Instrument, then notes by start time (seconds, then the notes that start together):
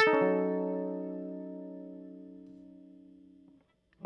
electric guitar
0.00 A4
0.07 D#4
0.14 C#4
0.22 F#3